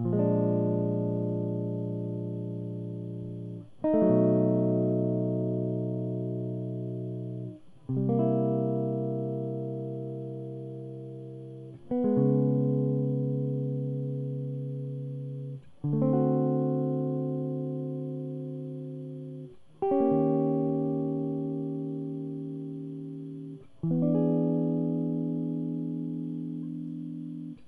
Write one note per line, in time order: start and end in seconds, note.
0.01 3.63 A#2
0.06 3.68 F3
0.14 3.61 G#3
0.20 3.68 D4
3.85 7.61 D#4
3.95 7.48 A3
4.03 7.58 F#3
4.11 7.52 B2
7.91 11.81 C3
7.98 11.79 G3
8.10 11.72 A#3
8.20 11.99 E4
11.92 15.59 B3
12.05 15.62 G#3
12.19 15.61 C#3
15.86 19.49 D3
15.94 18.87 A3
16.03 19.48 C4
16.14 19.55 F#4
19.83 23.66 G4
19.92 23.59 C#4
20.01 23.26 D#3
20.01 23.38 A#3
23.77 27.45 E3
23.85 27.56 E3
23.92 27.61 B3
24.03 27.56 D4
24.16 26.65 G#4